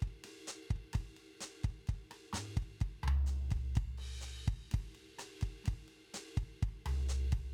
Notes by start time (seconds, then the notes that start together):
0.01 kick, ride
0.08 kick
0.24 snare, ride
0.48 hi-hat pedal
0.71 kick
0.76 kick
0.94 kick, cross-stick, snare, hi-hat pedal, ride
1.00 kick
1.17 ride
1.41 snare, hi-hat pedal, ride
1.64 kick, ride
1.70 kick
1.87 kick, hi-hat pedal, ride
1.94 kick
2.11 cross-stick, snare, ride
2.33 cross-stick, snare, hi-hat pedal, mid tom, ride
2.57 kick, ride
2.63 kick
2.81 kick, ride
3.04 floor tom
3.08 floor tom
3.27 hi-hat pedal, ride
3.51 kick, ride
3.57 kick
3.76 kick, ride bell
3.84 kick
3.98 crash
4.21 hi-hat pedal, ride bell
4.48 kick, ride
4.54 kick
4.71 kick, snare, hi-hat pedal, ride
4.80 kick
4.95 ride
5.19 cross-stick, snare, hi-hat pedal, ride
5.42 kick, ride
5.64 kick, snare, ride
5.74 kick
5.88 ride
6.14 snare, hi-hat pedal, ride
6.38 kick, ride
6.43 kick
6.63 kick, ride
6.69 kick
6.86 floor tom, ride
7.09 hi-hat pedal
7.33 kick, ride
7.38 kick